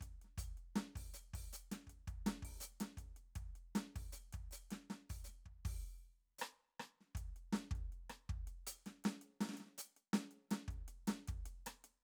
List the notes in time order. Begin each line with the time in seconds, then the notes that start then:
0.01 kick, snare, closed hi-hat
0.22 snare, closed hi-hat
0.38 closed hi-hat, kick
0.57 closed hi-hat
0.76 snare, closed hi-hat
0.96 kick, open hi-hat
1.14 hi-hat pedal
1.34 kick, open hi-hat
1.53 hi-hat pedal
1.72 snare, closed hi-hat
1.87 kick, closed hi-hat
2.08 kick, closed hi-hat
2.26 snare, closed hi-hat
2.43 kick, open hi-hat
2.60 closed hi-hat, hi-hat pedal
2.80 snare, closed hi-hat
2.97 kick, closed hi-hat
3.16 closed hi-hat
3.36 kick, closed hi-hat
3.55 closed hi-hat
3.75 snare, closed hi-hat
3.96 kick, open hi-hat
4.13 closed hi-hat, hi-hat pedal
4.33 kick, closed hi-hat
4.51 hi-hat pedal, open hi-hat
4.71 snare, closed hi-hat
4.90 snare, closed hi-hat
5.10 open hi-hat, kick
5.24 snare, hi-hat pedal
5.46 kick
5.65 open hi-hat, kick
6.39 cross-stick, hi-hat pedal
6.80 cross-stick
6.84 cross-stick
7.01 snare
7.04 snare
7.15 kick, closed hi-hat
7.36 closed hi-hat
7.53 snare, closed hi-hat
7.71 kick
7.75 closed hi-hat
7.92 closed hi-hat
8.10 cross-stick, closed hi-hat
8.29 kick, closed hi-hat
8.47 closed hi-hat
8.67 closed hi-hat
8.86 snare, closed hi-hat
9.04 snare, closed hi-hat
9.22 closed hi-hat
9.41 snare, closed hi-hat
9.45 snare
9.49 snare
9.54 snare, closed hi-hat
9.60 snare
9.66 snare
9.73 snare
9.78 hi-hat pedal
9.97 closed hi-hat
10.13 snare, closed hi-hat
10.31 closed hi-hat
10.51 snare, closed hi-hat
10.68 kick, closed hi-hat
10.88 closed hi-hat
11.08 snare, closed hi-hat
11.28 kick, closed hi-hat
11.46 closed hi-hat
11.66 cross-stick, closed hi-hat
11.84 closed hi-hat